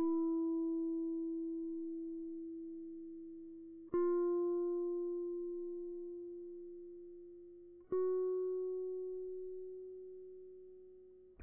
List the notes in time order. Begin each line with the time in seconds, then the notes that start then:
0.00 E4
3.94 F4
7.93 F#4